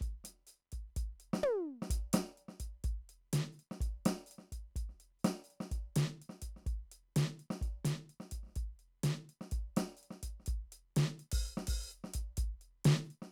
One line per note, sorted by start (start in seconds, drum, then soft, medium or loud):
0.01 closed hi-hat soft
0.01 kick soft
0.24 closed hi-hat medium
0.24 snare soft
0.47 closed hi-hat soft
0.47 hi-hat pedal medium
0.72 closed hi-hat soft
0.72 kick soft
0.96 closed hi-hat medium
0.96 kick soft
1.20 closed hi-hat soft
1.33 snare medium
1.43 high tom loud
1.82 snare soft
1.90 closed hi-hat loud
1.90 kick soft
1.96 kick soft
2.13 open hi-hat loud
2.13 snare medium
2.37 closed hi-hat soft
2.49 snare soft
2.60 closed hi-hat medium
2.60 kick soft
2.84 closed hi-hat medium
2.84 kick soft
3.09 closed hi-hat soft
3.33 closed hi-hat loud
3.33 snare medium
3.52 hi-hat pedal soft
3.59 closed hi-hat soft
3.71 snare soft
3.81 closed hi-hat medium
3.81 kick soft
4.05 closed hi-hat loud
4.05 snare medium
4.26 hi-hat pedal medium
4.31 closed hi-hat soft
4.38 snare soft
4.52 closed hi-hat medium
4.52 kick soft
4.76 closed hi-hat medium
4.76 kick soft
4.89 snare soft
5.00 closed hi-hat soft
5.19 hi-hat pedal soft
5.25 closed hi-hat medium
5.25 snare medium
5.44 hi-hat pedal medium
5.50 closed hi-hat soft
5.60 snare soft
5.72 closed hi-hat medium
5.72 kick soft
5.96 closed hi-hat medium
5.96 snare medium
6.22 closed hi-hat soft
6.29 snare soft
6.42 closed hi-hat medium
6.42 kick soft
6.56 snare soft
6.62 snare soft
6.64 closed hi-hat soft
6.64 kick soft
6.64 snare soft
6.92 closed hi-hat soft
7.16 closed hi-hat medium
7.16 snare medium
7.39 closed hi-hat soft
7.50 snare soft
7.62 kick soft
7.62 closed hi-hat soft
7.85 closed hi-hat medium
7.85 snare medium
8.09 closed hi-hat soft
8.20 snare soft
8.31 closed hi-hat medium
8.31 kick soft
8.43 snare soft
8.47 snare soft
8.49 snare soft
8.56 closed hi-hat medium
8.56 kick soft
8.79 closed hi-hat soft
9.03 closed hi-hat medium
9.03 snare medium
9.29 closed hi-hat soft
9.41 snare soft
9.51 closed hi-hat medium
9.51 kick soft
9.77 closed hi-hat medium
9.77 snare medium
9.97 hi-hat pedal medium
10.03 closed hi-hat soft
10.11 snare soft
10.23 closed hi-hat medium
10.23 kick soft
10.40 snare soft
10.46 closed hi-hat medium
10.46 kick soft
10.72 closed hi-hat medium
10.96 closed hi-hat medium
10.96 snare medium
11.19 closed hi-hat soft
11.32 open hi-hat loud
11.32 kick soft
11.50 hi-hat pedal soft
11.57 snare soft
11.67 open hi-hat loud
11.67 kick soft
11.90 hi-hat pedal medium
12.04 snare soft
12.14 closed hi-hat medium
12.14 kick soft
12.37 closed hi-hat medium
12.37 kick soft
12.44 kick soft
12.61 closed hi-hat soft
12.85 closed hi-hat medium
12.85 snare loud
13.04 hi-hat pedal soft
13.10 closed hi-hat soft
13.22 snare soft